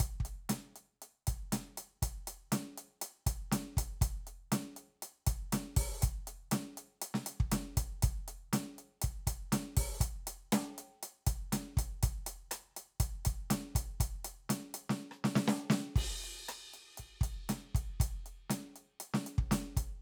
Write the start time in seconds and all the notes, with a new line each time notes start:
0.02 kick, closed hi-hat
0.20 kick
0.25 closed hi-hat
0.49 snare, closed hi-hat
0.76 closed hi-hat
1.02 closed hi-hat
1.27 kick, closed hi-hat
1.52 snare, closed hi-hat
1.77 closed hi-hat
2.02 kick, closed hi-hat
2.27 closed hi-hat
2.52 snare, closed hi-hat
2.78 closed hi-hat
3.01 closed hi-hat
3.26 kick, closed hi-hat
3.52 snare, closed hi-hat
3.77 kick, closed hi-hat
4.01 kick, closed hi-hat
4.27 closed hi-hat
4.52 snare, closed hi-hat
4.76 closed hi-hat
5.02 closed hi-hat
5.27 kick, closed hi-hat
5.52 snare, closed hi-hat
5.76 kick, open hi-hat
6.01 kick, closed hi-hat, hi-hat pedal
6.27 closed hi-hat
6.51 snare, closed hi-hat
6.77 closed hi-hat
7.02 closed hi-hat
7.14 snare
7.26 closed hi-hat
7.40 kick
7.52 snare, closed hi-hat
7.77 kick, closed hi-hat
8.02 kick, closed hi-hat
8.28 closed hi-hat
8.53 snare, closed hi-hat
8.78 closed hi-hat
9.02 kick, closed hi-hat
9.27 kick, closed hi-hat
9.52 snare, closed hi-hat
9.77 kick, open hi-hat
10.00 kick, closed hi-hat, hi-hat pedal
10.27 closed hi-hat
10.52 snare, closed hi-hat
10.78 closed hi-hat
11.03 closed hi-hat
11.27 kick, closed hi-hat
11.52 snare, closed hi-hat
11.77 kick, closed hi-hat
12.03 kick, closed hi-hat
12.26 closed hi-hat
12.51 cross-stick, closed hi-hat
12.76 closed hi-hat
13.00 kick, closed hi-hat
13.25 kick, closed hi-hat
13.50 snare, closed hi-hat
13.75 kick, closed hi-hat
14.00 kick, closed hi-hat
14.24 closed hi-hat
14.49 snare, closed hi-hat
14.74 closed hi-hat
14.89 snare
15.11 cross-stick
15.24 snare
15.35 snare
15.48 snare
15.70 snare
15.96 kick, crash
16.24 open hi-hat
16.48 cross-stick, closed hi-hat
16.74 closed hi-hat
16.97 kick, closed hi-hat
17.21 kick, closed hi-hat
17.49 snare, closed hi-hat
17.75 kick, closed hi-hat
18.00 kick, closed hi-hat
18.26 closed hi-hat
18.50 snare, closed hi-hat
18.76 closed hi-hat
19.00 closed hi-hat
19.14 snare
19.26 closed hi-hat
19.38 kick
19.51 closed hi-hat, snare
19.77 kick, closed hi-hat